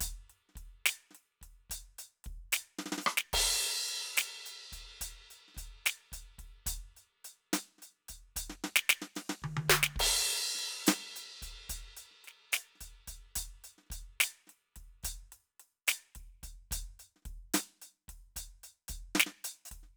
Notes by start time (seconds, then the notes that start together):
0.01 closed hi-hat, kick
0.06 kick
0.30 closed hi-hat
0.49 snare
0.54 kick, snare, closed hi-hat
0.86 closed hi-hat, snare
1.11 snare, closed hi-hat
1.42 kick, closed hi-hat
1.70 closed hi-hat, kick
1.99 closed hi-hat
2.24 kick, closed hi-hat
2.53 closed hi-hat, snare
2.79 snare
2.86 snare
2.92 snare
2.98 snare, hi-hat pedal
3.07 cross-stick
3.18 snare
3.34 kick, crash
3.39 kick
3.62 closed hi-hat
3.89 closed hi-hat
4.17 closed hi-hat, snare
4.46 closed hi-hat
4.73 closed hi-hat, kick
5.01 closed hi-hat, kick
5.31 closed hi-hat
5.48 snare
5.55 closed hi-hat, kick, snare
5.86 closed hi-hat, snare
6.12 closed hi-hat, kick, snare
6.39 kick, closed hi-hat
6.67 closed hi-hat, kick
6.72 kick
6.97 closed hi-hat
7.25 closed hi-hat
7.53 closed hi-hat, snare
7.79 closed hi-hat, snare
8.09 closed hi-hat, kick
8.36 closed hi-hat, kick
8.50 snare
8.64 snare
8.76 snare
8.90 snare, hi-hat pedal
9.02 snare
9.16 snare, hi-hat pedal
9.30 snare
9.42 kick, high tom
9.57 high tom
9.69 kick, snare
9.83 snare
9.96 kick, crash
10.02 kick
10.31 open hi-hat
10.55 snare, closed hi-hat
10.87 closed hi-hat, snare
11.16 closed hi-hat
11.42 closed hi-hat, kick
11.70 closed hi-hat, kick
11.97 closed hi-hat
12.11 snare
12.25 snare, closed hi-hat
12.52 open hi-hat, snare, hi-hat pedal
12.76 snare
12.81 closed hi-hat, kick
13.08 closed hi-hat, kick
13.36 closed hi-hat, kick
13.64 closed hi-hat
13.78 snare
13.84 snare
13.87 kick, snare
13.92 closed hi-hat
14.21 closed hi-hat, snare
14.47 snare, closed hi-hat
14.76 kick, closed hi-hat
15.03 closed hi-hat, kick, hi-hat pedal
15.32 closed hi-hat
15.60 closed hi-hat
15.87 closed hi-hat, snare, hi-hat pedal
16.15 kick, closed hi-hat
16.43 closed hi-hat, kick
16.72 closed hi-hat, kick
16.77 kick
17.00 closed hi-hat
17.16 snare
17.23 kick, snare, closed hi-hat
17.54 closed hi-hat, snare
17.82 closed hi-hat
18.09 kick, closed hi-hat
18.36 closed hi-hat, kick
18.64 closed hi-hat
18.89 closed hi-hat, kick
19.15 snare
19.20 snare
19.27 snare
19.45 open hi-hat
19.66 hi-hat pedal
19.72 kick, closed hi-hat
19.83 snare